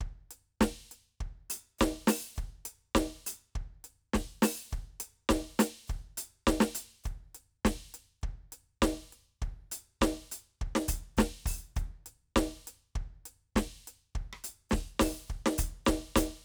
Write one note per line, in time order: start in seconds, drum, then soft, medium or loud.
0.01 kick medium
0.01 closed hi-hat soft
0.31 closed hi-hat medium
0.61 kick medium
0.61 snare loud
0.92 closed hi-hat medium
1.21 kick medium
1.21 closed hi-hat soft
1.50 open hi-hat loud
1.79 kick medium
1.79 snare loud
1.79 hi-hat pedal medium
2.08 open hi-hat loud
2.08 snare loud
2.36 kick medium
2.36 hi-hat pedal medium
2.66 closed hi-hat loud
2.95 kick medium
2.95 snare loud
3.27 closed hi-hat loud
3.56 kick medium
3.56 closed hi-hat soft
3.84 closed hi-hat medium
4.14 kick medium
4.14 snare loud
4.43 open hi-hat loud
4.43 snare loud
4.71 kick medium
4.71 hi-hat pedal soft
5.00 closed hi-hat loud
5.29 kick medium
5.29 snare loud
5.59 closed hi-hat loud
5.59 snare loud
5.88 kick medium
5.88 closed hi-hat soft
5.88 hi-hat pedal soft
6.18 closed hi-hat loud
6.47 kick medium
6.47 snare loud
6.61 snare loud
6.73 closed hi-hat loud
6.73 kick soft
7.04 kick medium
7.04 closed hi-hat soft
7.04 hi-hat pedal medium
7.09 crash soft
7.35 closed hi-hat medium
7.65 kick medium
7.65 snare loud
7.94 closed hi-hat medium
8.22 kick medium
8.22 closed hi-hat soft
8.52 closed hi-hat medium
8.82 kick medium
8.82 snare loud
9.13 closed hi-hat soft
9.42 kick medium
9.42 snare soft
9.42 closed hi-hat soft
9.42 crash soft
9.42 ride soft
9.72 closed hi-hat loud
10.01 kick medium
10.01 snare loud
10.32 closed hi-hat loud
10.61 kick medium
10.61 crash soft
10.75 snare loud
10.88 open hi-hat loud
10.88 kick medium
11.17 kick medium
11.17 snare loud
11.17 hi-hat pedal medium
11.46 open hi-hat loud
11.46 kick medium
11.76 kick medium
11.76 hi-hat pedal medium
12.06 closed hi-hat medium
12.36 kick medium
12.36 snare loud
12.67 closed hi-hat medium
12.96 kick medium
13.26 closed hi-hat medium
13.56 kick medium
13.56 snare loud
13.56 closed hi-hat soft
13.88 closed hi-hat medium
14.15 kick medium
14.15 crash soft
14.33 cross-stick medium
14.44 closed hi-hat loud
14.49 kick soft
14.70 kick medium
14.70 snare loud
14.70 hi-hat pedal soft
15.00 open hi-hat loud
15.00 kick medium
15.00 snare loud
15.27 kick medium
15.27 hi-hat pedal soft
15.46 snare loud
15.58 closed hi-hat loud
15.58 kick medium
15.86 kick medium
15.86 snare loud
15.86 hi-hat pedal soft
16.16 open hi-hat loud
16.16 kick medium
16.16 snare loud